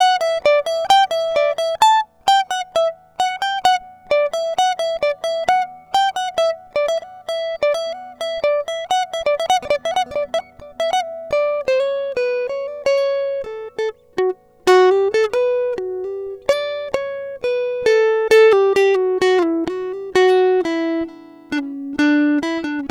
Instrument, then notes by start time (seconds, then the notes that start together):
acoustic guitar
0.01 F#5
0.22 E5
0.46 D5
0.67 E5
0.91 G5
1.12 E5
1.37 D5
1.59 E5
1.83 A5
2.29 G5
2.51 F#5
2.77 E5
3.21 F#5
3.43 G5
3.66 F#5
4.12 D5
4.34 E5
4.59 F#5
4.80 E5
5.04 D5
5.25 E5
5.49 F#5
5.95 G5
6.17 F#5
6.39 E5
6.89 E5
6.99 F#5
7.29 E5
7.63 D5
7.75 E5
7.93 F#5
8.22 E5
8.45 D5
8.69 E5
8.92 F#5
9.14 E5
9.27 D5
9.40 E5
9.51 F#5
9.72 D5
9.86 F5
9.98 F#5
10.16 D5
10.35 F5
10.61 D5
10.80 E5
10.95 F#5
11.04 E5
11.32 D5
11.69 C5
11.81 C#5
12.18 B4
12.48 C#5
12.60 D5
12.87 C#5
13.45 A4
13.79 A4
14.19 F#4
14.68 F#4
14.87 G4
15.15 A4
15.34 B4
15.79 F#4
16.05 G4
16.50 D5
16.95 C#5
17.45 B4
17.87 A4
18.32 A4
18.54 G4
18.77 G4
18.96 F#4
19.23 F#4
19.39 E4
19.68 F#4
19.93 G4
20.16 F#4
20.66 E4
21.03 D4 E4
21.53 D4
22.00 D4
22.44 E4
22.65 D4